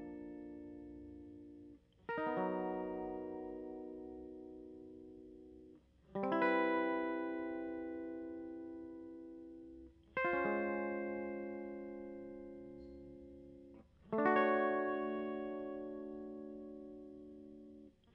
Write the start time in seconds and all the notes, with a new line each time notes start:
2.10 A#4
2.19 D#4
2.28 B3
2.38 F#3
6.16 G3
6.24 C4
6.33 E4
6.42 B4
10.18 C5
10.25 F4
10.34 C#4
10.46 G#3
14.14 A3
14.19 D4
14.26 F#4
14.37 C#5
16.22 C#5